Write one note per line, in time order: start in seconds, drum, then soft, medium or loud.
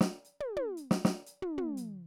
0.01 snare loud
0.25 hi-hat pedal medium
0.40 open hi-hat soft
0.40 high tom loud
0.56 high tom loud
0.77 hi-hat pedal medium
0.91 snare medium
1.05 snare medium
1.27 hi-hat pedal medium
1.42 floor tom medium
1.57 floor tom medium
1.77 hi-hat pedal medium